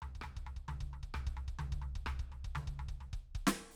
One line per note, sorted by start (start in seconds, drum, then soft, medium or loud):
0.01 floor tom medium
0.15 kick soft
0.21 cross-stick medium
0.21 floor tom medium
0.36 kick soft
0.46 floor tom medium
0.56 kick soft
0.68 floor tom medium
0.68 high tom medium
0.80 kick soft
0.93 floor tom soft
1.03 kick soft
1.14 cross-stick medium
1.14 floor tom medium
1.26 kick soft
1.37 floor tom medium
1.48 kick soft
1.59 floor tom medium
1.59 high tom medium
1.72 kick soft
1.82 floor tom soft
1.95 kick soft
2.06 cross-stick medium
2.06 floor tom medium
2.19 kick soft
2.32 floor tom soft
2.44 kick soft
2.55 floor tom medium
2.55 high tom medium
2.67 kick soft
2.79 floor tom medium
2.88 kick soft
3.00 floor tom soft
3.13 kick soft
3.35 kick soft
3.47 snare loud
3.47 ride medium
3.71 hi-hat pedal soft